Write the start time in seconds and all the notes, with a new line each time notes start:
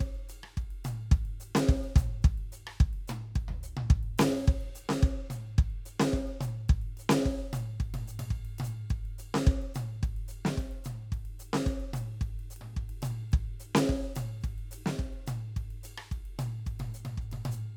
0.01 kick, snare, hi-hat pedal, ride
0.15 ride
0.29 hi-hat pedal, ride bell
0.44 cross-stick
0.57 kick, hi-hat pedal, ride
0.71 ride
0.85 hi-hat pedal, high tom, ride bell
1.12 kick, hi-hat pedal, ride
1.26 ride
1.41 hi-hat pedal, ride
1.56 snare
1.69 kick, ride
1.84 ride
1.96 kick, hi-hat pedal, high tom, ride bell
2.23 kick, hi-hat pedal, ride
2.38 ride
2.53 hi-hat pedal, ride bell
2.67 cross-stick
2.81 kick, ride
2.94 ride
3.01 kick
3.08 hi-hat pedal, high tom, ride bell
3.36 kick, ride
3.49 floor tom, ride
3.64 hi-hat pedal, ride
3.77 high tom
3.91 kick, ride
4.04 ride
4.18 snare, hi-hat pedal, ride
4.48 kick, ride
4.61 ride
4.76 hi-hat pedal, ride bell
4.90 snare
5.03 kick, ride
5.31 hi-hat pedal, high tom, ride bell
5.59 kick, ride
5.71 ride
5.86 hi-hat pedal, ride bell
6.00 snare
6.14 kick
6.28 ride
6.41 hi-hat pedal, high tom, ride bell
6.69 kick, ride
6.82 ride
6.98 hi-hat pedal, ride bell
7.10 snare
7.26 kick, hi-hat pedal
7.54 hi-hat pedal, high tom, ride bell
7.81 kick, ride
7.95 high tom, ride bell
8.08 hi-hat pedal
8.20 high tom, ride bell
8.31 kick, hi-hat pedal
8.45 ride
8.59 high tom, ride bell
8.64 hi-hat pedal
8.91 kick, ride
9.06 ride
9.19 hi-hat pedal, ride bell
9.35 snare
9.47 kick, ride
9.62 ride
9.75 hi-hat pedal, high tom, ride bell
10.03 kick, ride
10.17 ride
10.29 hi-hat pedal, ride bell
10.46 snare
10.58 kick, ride
10.72 ride
10.85 hi-hat pedal, high tom, ride bell
11.13 kick, ride
11.26 ride
11.40 hi-hat pedal, ride
11.54 snare
11.67 kick, ride
11.81 ride
11.94 hi-hat pedal, high tom, ride
12.22 kick, ride
12.40 ride
12.51 hi-hat pedal
12.57 ride
12.62 high tom
12.77 kick, hi-hat pedal
12.90 ride
13.03 hi-hat pedal, high tom, ride bell
13.31 kick, hi-hat pedal, ride
13.60 hi-hat pedal, ride
13.75 snare
13.87 kick, hi-hat pedal
14.15 kick, hi-hat pedal, high tom, ride bell
14.42 kick, hi-hat pedal, ride
14.59 ride
14.72 hi-hat pedal, ride
14.86 snare
14.98 kick, hi-hat pedal
15.13 ride
15.27 hi-hat pedal, high tom, ride bell
15.57 kick, ride
15.71 ride
15.84 hi-hat pedal, ride bell
15.98 cross-stick
16.11 kick, hi-hat pedal, ride
16.26 ride
16.39 hi-hat pedal, high tom, ride bell
16.66 kick, hi-hat pedal, ride
16.80 high tom, ride bell
16.95 hi-hat pedal
17.06 high tom, ride bell
17.18 kick, hi-hat pedal
17.32 high tom, ride bell
17.46 high tom, ride bell
17.52 hi-hat pedal